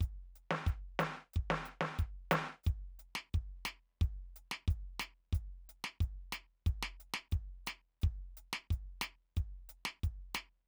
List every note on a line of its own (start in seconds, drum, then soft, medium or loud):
0.01 kick medium
0.01 closed hi-hat soft
0.36 closed hi-hat soft
0.51 snare medium
0.67 kick medium
0.67 closed hi-hat soft
0.99 snare medium
0.99 closed hi-hat medium
1.34 kick medium
1.34 closed hi-hat soft
1.50 snare medium
1.66 closed hi-hat soft
1.81 snare medium
1.99 kick medium
1.99 closed hi-hat soft
2.31 snare loud
2.31 open hi-hat medium
2.64 kick medium
2.64 closed hi-hat soft
2.64 hi-hat pedal medium
2.99 closed hi-hat soft
3.15 snare medium
3.34 kick medium
3.34 closed hi-hat soft
3.65 snare medium
3.65 closed hi-hat medium
4.01 kick medium
4.01 closed hi-hat soft
4.36 closed hi-hat medium
4.52 snare medium
4.68 kick medium
4.68 closed hi-hat soft
5.00 snare medium
5.00 closed hi-hat medium
5.33 kick medium
5.33 closed hi-hat medium
5.69 closed hi-hat medium
5.84 snare medium
6.01 kick medium
6.01 closed hi-hat soft
6.33 snare medium
6.33 closed hi-hat medium
6.67 kick medium
6.67 closed hi-hat soft
6.83 snare medium
7.00 closed hi-hat soft
7.14 snare medium
7.32 kick medium
7.32 closed hi-hat soft
7.67 snare medium
7.67 closed hi-hat medium
8.02 kick medium
8.02 closed hi-hat soft
8.37 closed hi-hat medium
8.53 snare medium
8.71 kick medium
8.71 closed hi-hat soft
9.02 snare medium
9.02 closed hi-hat medium
9.37 kick medium
9.37 closed hi-hat soft
9.69 closed hi-hat medium
9.85 snare medium
10.04 kick medium
10.04 closed hi-hat soft
10.35 snare medium
10.35 closed hi-hat medium